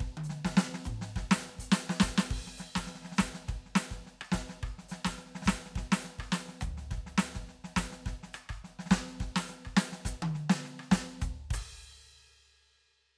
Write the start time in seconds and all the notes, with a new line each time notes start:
0.01 kick, snare
0.07 kick
0.18 high tom
0.24 hi-hat pedal
0.30 snare
0.45 kick, snare
0.58 snare
0.75 snare
0.85 kick, hi-hat pedal, mid tom
0.93 kick
1.02 snare
1.16 kick, snare
1.23 kick
1.32 snare
1.41 snare, hi-hat pedal
1.59 open hi-hat, kick
1.72 snare
1.90 snare
2.01 kick, snare, hi-hat pedal
2.09 kick
2.12 kick
2.18 snare
2.31 kick, crash
2.38 kick
2.44 kick, snare
2.58 snare, hi-hat pedal
2.76 kick, snare
2.87 snare
2.96 snare
3.03 snare
3.05 snare
3.12 snare
3.17 kick, snare, hi-hat pedal
3.26 kick
3.35 snare
3.48 kick, snare
3.56 kick
3.60 kick
3.66 snare
3.76 snare, hi-hat pedal
3.91 kick, snare
4.07 snare
4.22 cross-stick
4.32 kick, snare, hi-hat pedal
4.50 snare
4.63 kick, cross-stick
4.69 kick
4.79 snare
4.89 snare, hi-hat pedal
5.05 kick, snare
5.18 snare
5.27 snare
5.32 snare
5.36 snare
5.43 kick, snare, hi-hat pedal
5.48 snare
5.53 kick
5.67 snare
5.76 kick, snare
5.82 kick
5.93 snare
6.01 snare, hi-hat pedal
6.19 kick, cross-stick
6.33 snare
6.49 snare
6.61 kick, hi-hat pedal, floor tom
6.69 kick
6.72 kick
6.78 snare
6.91 kick, snare
6.98 kick
7.07 snare
7.18 snare, hi-hat pedal
7.35 kick, snare
7.49 snare
7.65 snare
7.77 kick, snare, hi-hat pedal
7.93 snare
8.06 kick, snare
8.13 kick
8.24 snare
8.34 cross-stick, hi-hat pedal
8.50 kick, cross-stick
8.65 snare
8.80 snare
8.86 snare
8.91 kick, snare, hi-hat pedal
8.99 kick
9.08 snare
9.21 kick, snare
9.27 kick
9.36 snare
9.47 snare, hi-hat pedal
9.66 kick, cross-stick
9.77 snare
9.93 snare
10.06 kick, snare, hi-hat pedal
10.15 kick
10.23 high tom
10.35 snare
10.50 snare
10.65 snare
10.80 cross-stick
10.92 kick, snare
10.97 kick
11.22 kick, hi-hat pedal, floor tom
11.30 kick
11.43 kick
11.51 kick, cross-stick, hi-hat pedal, crash
11.65 kick